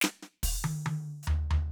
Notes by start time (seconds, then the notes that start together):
0.01 snare
0.04 snare
0.22 snare
0.43 open hi-hat, kick
0.64 high tom
0.86 high tom
1.23 hi-hat pedal
1.27 floor tom
1.51 floor tom